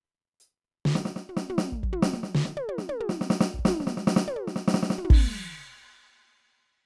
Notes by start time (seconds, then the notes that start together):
0.40 hi-hat pedal
0.85 snare
0.95 snare
1.16 snare
1.28 floor tom
1.37 snare
1.49 floor tom
1.58 snare
1.72 kick
1.83 kick
1.92 floor tom
2.02 snare
2.13 snare
2.23 snare
2.35 snare
2.45 snare
2.57 high tom
2.68 high tom
2.78 snare
2.89 high tom
3.00 mid tom
3.09 snare
3.21 snare
3.30 snare
3.41 snare
3.54 kick
3.59 kick
3.65 snare, floor tom, hi-hat pedal
3.80 snare
3.87 snare
3.97 snare
4.07 snare, hi-hat pedal
4.16 snare
4.27 high tom
4.36 high tom
4.47 snare
4.56 snare
4.68 snare
4.74 snare
4.83 snare
4.90 snare
4.97 floor tom
5.04 floor tom
5.10 kick, crash